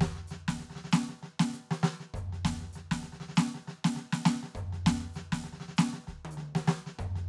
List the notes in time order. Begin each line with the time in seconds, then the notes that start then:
0.01 kick, snare
0.16 snare
0.28 snare, hi-hat pedal
0.48 kick, snare
0.60 snare
0.70 snare
0.76 snare
0.85 snare
0.92 snare, hi-hat pedal
1.09 snare
1.23 snare
1.40 snare
1.54 snare, hi-hat pedal
1.71 snare
1.84 snare
2.00 snare
2.14 kick, floor tom, hi-hat pedal
2.24 kick
2.33 snare
2.45 kick, snare
2.52 kick
2.61 snare
2.73 snare, hi-hat pedal
2.92 kick, snare
3.03 snare
3.13 snare
3.21 snare
3.29 snare
3.36 snare, hi-hat pedal
3.55 snare
3.68 snare
3.85 snare
3.94 snare, hi-hat pedal
4.13 snare
4.26 snare
4.43 snare
4.56 kick, floor tom, hi-hat pedal
4.73 snare
4.86 kick, snare
4.95 kick
5.01 snare
5.14 snare, hi-hat pedal
5.33 kick, snare
5.44 snare
5.53 snare
5.61 snare
5.69 snare
5.77 snare, hi-hat pedal
5.94 snare
6.08 kick, snare
6.25 open hi-hat, high tom
6.31 hi-hat pedal
6.38 snare
6.55 kick, snare
6.68 snare
6.87 snare
6.99 kick, floor tom, hi-hat pedal
7.06 kick
7.16 snare